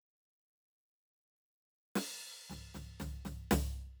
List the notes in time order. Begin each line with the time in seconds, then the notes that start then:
1.95 snare, crash
2.50 snare, floor tom
2.74 snare, floor tom
3.00 snare, floor tom
3.25 snare, floor tom
3.51 snare, floor tom